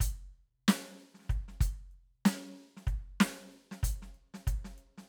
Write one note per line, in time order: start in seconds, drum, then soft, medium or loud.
0.01 closed hi-hat loud
0.01 kick medium
0.69 closed hi-hat medium
0.69 snare loud
0.99 snare soft
0.99 closed hi-hat soft
1.15 snare soft
1.20 snare soft
1.22 snare soft
1.30 kick medium
1.30 closed hi-hat soft
1.49 snare soft
1.61 closed hi-hat medium
1.61 kick medium
1.92 closed hi-hat soft
2.26 closed hi-hat medium
2.26 snare loud
2.58 closed hi-hat soft
2.78 snare soft
2.88 kick medium
2.88 closed hi-hat soft
3.21 snare loud
3.21 closed hi-hat medium
3.51 snare soft
3.51 closed hi-hat soft
3.72 snare soft
3.84 closed hi-hat medium
3.84 kick medium
4.03 snare soft
4.15 closed hi-hat soft
4.35 snare soft
4.48 kick medium
4.48 closed hi-hat medium
4.65 snare soft
4.79 closed hi-hat soft
4.99 snare soft